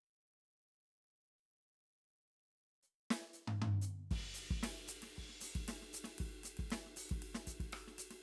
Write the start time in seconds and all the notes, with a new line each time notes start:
2.83 hi-hat pedal
3.10 snare
3.33 hi-hat pedal
3.47 floor tom
3.62 floor tom
3.81 hi-hat pedal
4.11 kick, crash, ride
4.34 hi-hat pedal
4.38 ride
4.51 kick
4.63 snare, ride
4.80 snare
4.88 hi-hat pedal, ride
5.02 snare, ride
5.15 kick, ride
5.29 snare
5.40 snare, hi-hat pedal, ride
5.55 kick, ride
5.68 snare, ride
5.82 snare
5.93 hi-hat pedal, ride
6.04 snare, ride
6.18 kick, ride
6.32 snare
6.43 snare, hi-hat pedal, ride
6.57 kick, ride
6.70 snare, ride
6.86 snare
6.96 hi-hat pedal, ride
7.09 kick, ride
7.22 ride
7.34 snare
7.47 kick, hi-hat pedal, ride
7.60 kick, ride
7.72 cross-stick, ride
7.87 snare
7.98 hi-hat pedal, ride
8.10 snare, ride